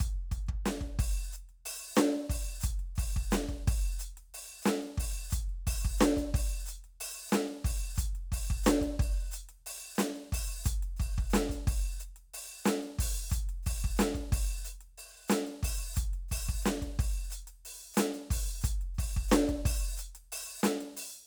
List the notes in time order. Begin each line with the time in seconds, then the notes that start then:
0.00 closed hi-hat, kick
0.31 closed hi-hat, kick
0.47 kick, closed hi-hat
0.66 closed hi-hat, snare
0.81 kick
0.99 open hi-hat, kick
1.33 hi-hat pedal
1.49 closed hi-hat
1.65 open hi-hat
1.95 closed hi-hat, snare, hi-hat pedal
2.29 open hi-hat, kick
2.60 closed hi-hat, kick, hi-hat pedal
2.79 closed hi-hat
2.95 open hi-hat, kick, hi-hat pedal
3.16 kick
3.31 closed hi-hat, snare, hi-hat pedal
3.48 kick, closed hi-hat
3.67 open hi-hat, kick
3.99 closed hi-hat, hi-hat pedal
4.17 closed hi-hat
4.34 open hi-hat
4.62 closed hi-hat, snare, hi-hat pedal
4.82 closed hi-hat
4.98 open hi-hat, kick
5.30 closed hi-hat, kick, hi-hat pedal
5.49 closed hi-hat
5.67 open hi-hat, kick
5.85 kick
5.98 closed hi-hat, snare, hi-hat pedal
6.17 closed hi-hat, kick
6.34 open hi-hat, kick
6.66 closed hi-hat, hi-hat pedal
6.84 closed hi-hat
7.00 open hi-hat
7.29 closed hi-hat, snare, hi-hat pedal
7.48 closed hi-hat
7.64 open hi-hat, kick, hi-hat pedal
7.95 closed hi-hat, kick, hi-hat pedal
8.15 closed hi-hat
8.32 open hi-hat, kick
8.50 kick
8.63 closed hi-hat, snare, hi-hat pedal
8.81 kick, closed hi-hat
8.99 open hi-hat, kick
9.31 closed hi-hat, hi-hat pedal
9.49 closed hi-hat
9.66 open hi-hat
9.95 closed hi-hat, snare, hi-hat pedal
10.16 closed hi-hat
10.32 open hi-hat, kick
10.64 closed hi-hat, kick, hi-hat pedal
10.83 closed hi-hat
10.96 kick, hi-hat pedal
11.00 open hi-hat
11.18 kick
11.30 closed hi-hat, snare, hi-hat pedal
11.49 closed hi-hat, kick
11.67 open hi-hat, kick
12.00 open hi-hat, hi-hat pedal
12.16 closed hi-hat
12.34 open hi-hat
12.64 closed hi-hat, snare, hi-hat pedal
12.83 closed hi-hat
12.99 open hi-hat, kick
13.29 closed hi-hat, kick, hi-hat pedal
13.49 closed hi-hat
13.63 open hi-hat, kick, hi-hat pedal
13.84 kick
13.96 closed hi-hat, snare, hi-hat pedal
14.14 kick, closed hi-hat
14.32 open hi-hat, kick
14.64 open hi-hat, hi-hat pedal
14.81 closed hi-hat
14.98 open hi-hat
15.28 closed hi-hat, snare, hi-hat pedal
15.47 closed hi-hat
15.63 open hi-hat, kick
15.94 closed hi-hat, kick, hi-hat pedal
16.13 closed hi-hat
16.28 open hi-hat, kick, hi-hat pedal
16.49 kick
16.62 closed hi-hat, snare, hi-hat pedal
16.82 kick, closed hi-hat
16.94 hi-hat pedal
16.99 open hi-hat, kick
17.30 closed hi-hat, hi-hat pedal
17.47 closed hi-hat
17.65 open hi-hat
17.94 closed hi-hat, snare, hi-hat pedal
18.14 closed hi-hat
18.30 open hi-hat, kick
18.61 closed hi-hat, kick, hi-hat pedal
18.81 closed hi-hat
18.94 hi-hat pedal
18.98 open hi-hat, kick
19.16 kick
19.28 closed hi-hat, snare, hi-hat pedal
19.49 kick, closed hi-hat
19.65 open hi-hat, kick
19.97 closed hi-hat, hi-hat pedal
20.15 closed hi-hat
20.32 open hi-hat
20.60 snare, hi-hat pedal
20.64 closed hi-hat
20.81 closed hi-hat
20.93 open hi-hat, hi-hat pedal